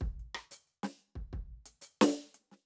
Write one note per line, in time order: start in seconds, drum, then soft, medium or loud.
0.01 kick medium
0.20 closed hi-hat soft
0.35 cross-stick medium
0.51 hi-hat pedal medium
0.67 open hi-hat soft
0.83 snare medium
1.16 kick soft
1.33 kick medium
1.66 closed hi-hat medium
1.82 hi-hat pedal medium
2.01 snare loud
2.08 snare soft
2.34 closed hi-hat soft
2.52 snare soft